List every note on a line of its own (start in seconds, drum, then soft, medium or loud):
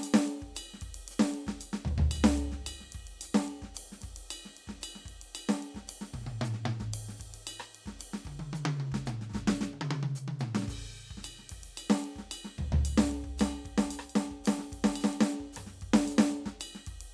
0.03 hi-hat pedal medium
0.03 ride bell medium
0.14 snare loud
0.28 ride medium
0.42 kick soft
0.48 kick soft
0.55 hi-hat pedal medium
0.55 ride bell loud
0.73 snare soft
0.81 kick soft
0.81 ride medium
0.88 kick soft
0.94 ride medium
1.08 hi-hat pedal medium
1.08 ride medium
1.19 snare loud
1.34 ride medium
1.46 kick soft
1.46 snare medium
1.60 hi-hat pedal medium
1.60 ride bell medium
1.73 snare medium
1.85 kick soft
1.85 floor tom loud
1.93 kick soft
1.98 floor tom loud
2.11 hi-hat pedal medium
2.11 ride bell loud
2.24 snare loud
2.37 ride medium
2.51 kick soft
2.51 snare soft
2.66 hi-hat pedal medium
2.66 ride bell loud
2.80 snare soft
2.92 kick soft
2.92 ride medium
3.00 kick soft
3.00 snare soft
3.07 ride medium
3.21 hi-hat pedal medium
3.21 ride bell loud
3.34 snare loud
3.48 ride soft
3.62 kick soft
3.62 snare soft
3.74 hi-hat pedal medium
3.74 ride loud
3.92 snare soft
4.01 kick soft
4.01 snare soft
4.01 ride medium
4.06 kick soft
4.06 snare soft
4.16 ride medium
4.30 hi-hat pedal medium
4.30 ride bell loud
4.45 snare soft
4.56 ride medium
4.67 kick soft
4.67 snare soft
4.75 snare soft
4.81 hi-hat pedal medium
4.81 ride bell loud
4.95 snare soft
5.01 snare soft
5.05 kick soft
5.05 snare soft
5.05 ride medium
5.08 snare soft
5.21 ride medium
5.35 hi-hat pedal medium
5.35 ride bell loud
5.49 snare medium
5.62 ride medium
5.74 kick soft
5.74 snare soft
5.87 hi-hat pedal medium
5.87 ride loud
6.01 snare soft
6.13 kick soft
6.13 snare soft
6.13 mid tom medium
6.21 snare soft
6.26 snare soft
6.26 mid tom medium
6.28 snare soft
6.31 snare soft
6.41 hi-hat pedal medium
6.41 mid tom loud
6.54 snare soft
6.65 mid tom loud
6.80 kick soft
6.80 snare soft
6.93 hi-hat pedal medium
6.93 ride loud
7.08 snare soft
7.14 snare soft
7.19 kick soft
7.19 ride medium
7.31 snare soft
7.31 ride medium
7.47 hi-hat pedal medium
7.47 ride bell loud
7.59 cross-stick medium
7.74 ride medium
7.85 kick soft
7.85 snare soft
7.99 hi-hat pedal medium
7.99 ride loud
8.13 snare medium
8.25 kick soft
8.25 high tom medium
8.39 high tom medium
8.53 hi-hat pedal medium
8.53 high tom loud
8.65 high tom loud
8.80 high tom medium
8.91 kick soft
8.91 snare medium
9.06 hi-hat pedal medium
9.06 mid tom loud
9.21 snare soft
9.29 snare soft
9.33 kick soft
9.33 snare medium
9.40 kick soft
9.47 snare loud
9.61 snare medium
9.61 hi-hat pedal medium
9.73 high tom soft
9.81 high tom loud
9.91 high tom loud
10.03 high tom loud
10.15 hi-hat pedal loud
10.28 open hi-hat soft
10.28 high tom medium
10.39 hi-hat pedal soft
10.39 mid tom loud
10.54 snare medium
10.62 snare soft
10.68 kick medium
10.68 hi-hat pedal medium
10.68 crash medium
10.80 kick soft
11.10 kick soft
11.17 snare soft
11.23 hi-hat pedal medium
11.23 ride bell loud
11.38 snare soft
11.49 kick soft
11.49 ride medium
11.62 snare soft
11.62 ride medium
11.66 snare soft
11.77 hi-hat pedal medium
11.77 ride bell loud
11.90 snare loud
12.04 ride medium
12.15 kick soft
12.15 snare soft
12.31 hi-hat pedal medium
12.31 ride bell loud
12.44 snare soft
12.58 kick soft
12.58 floor tom medium
12.64 kick soft
12.72 floor tom loud
12.85 hi-hat pedal medium
12.85 ride bell loud
12.97 snare loud
13.11 ride medium
13.24 kick soft
13.38 snare loud
13.38 hi-hat pedal medium
13.38 ride bell loud
13.65 kick soft
13.65 ride soft
13.77 snare loud
13.90 hi-hat pedal medium
13.90 ride bell medium
13.99 cross-stick medium
14.09 ride bell medium
14.15 snare medium
14.30 kick soft
14.44 snare loud
14.44 hi-hat pedal medium
14.44 ride loud
14.58 snare soft
14.72 kick soft
14.72 ride medium
14.78 kick soft
14.84 snare loud
14.95 ride bell loud
15.00 hi-hat pedal medium
15.04 snare medium
15.13 ride medium
15.20 snare loud
15.40 kick soft
15.52 cross-stick medium
15.52 hi-hat pedal medium
15.52 ride medium
15.52 floor tom soft
15.66 snare soft
15.81 kick soft
15.81 ride soft
15.93 snare loud
16.07 hi-hat pedal medium
16.07 ride bell medium
16.18 snare loud
16.45 kick soft
16.45 snare medium
16.60 hi-hat pedal medium
16.60 ride bell loud
16.75 snare soft
16.86 kick soft
16.86 cross-stick soft
16.86 ride medium
16.93 kick soft
17.00 ride medium